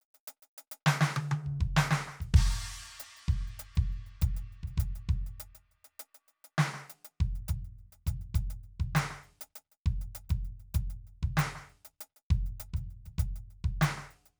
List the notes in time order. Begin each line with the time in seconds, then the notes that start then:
0.02 closed hi-hat
0.15 closed hi-hat
0.28 closed hi-hat
0.43 closed hi-hat
0.59 closed hi-hat
0.72 closed hi-hat
0.87 snare
1.02 snare
1.17 high tom
1.32 high tom
1.47 kick
1.61 kick
1.77 snare
1.92 snare
2.08 snare
2.21 kick, closed hi-hat
2.35 kick, crash
2.52 closed hi-hat
2.63 closed hi-hat
2.85 closed hi-hat
3.01 closed hi-hat
3.18 closed hi-hat
3.29 kick, closed hi-hat
3.48 closed hi-hat
3.60 closed hi-hat
3.76 closed hi-hat, kick
3.93 closed hi-hat
4.07 closed hi-hat
4.22 closed hi-hat, kick
4.37 closed hi-hat
4.53 closed hi-hat
4.64 kick
4.68 closed hi-hat
4.78 closed hi-hat, kick
4.96 closed hi-hat
5.10 kick, closed hi-hat
5.27 closed hi-hat
5.41 closed hi-hat
5.56 closed hi-hat
5.72 closed hi-hat
5.85 closed hi-hat
6.00 closed hi-hat
6.15 closed hi-hat
6.29 closed hi-hat
6.45 closed hi-hat
6.59 snare
6.74 snare
6.91 closed hi-hat
7.05 closed hi-hat
7.21 kick, closed hi-hat
7.36 closed hi-hat
7.49 closed hi-hat, kick
7.65 closed hi-hat
7.79 closed hi-hat
7.93 closed hi-hat
8.07 kick, closed hi-hat
8.22 closed hi-hat
8.35 closed hi-hat, kick
8.51 closed hi-hat
8.64 closed hi-hat
8.80 kick, closed hi-hat
8.96 closed hi-hat, snare
9.11 snare
9.24 closed hi-hat
9.42 closed hi-hat
9.56 closed hi-hat
9.72 closed hi-hat
9.87 kick, closed hi-hat
10.02 closed hi-hat
10.16 closed hi-hat
10.30 closed hi-hat, kick
10.45 closed hi-hat
10.60 closed hi-hat
10.75 closed hi-hat, kick
10.91 closed hi-hat
11.08 closed hi-hat
11.23 kick
11.38 closed hi-hat, snare
11.56 snare
11.70 closed hi-hat
11.86 closed hi-hat
12.01 closed hi-hat
12.17 closed hi-hat
12.31 kick, closed hi-hat
12.47 closed hi-hat
12.61 closed hi-hat
12.74 closed hi-hat, kick
12.91 closed hi-hat
13.06 kick, closed hi-hat
13.19 closed hi-hat, kick
13.37 closed hi-hat
13.51 closed hi-hat
13.65 kick
13.82 closed hi-hat, snare
13.98 snare
14.11 closed hi-hat
14.26 closed hi-hat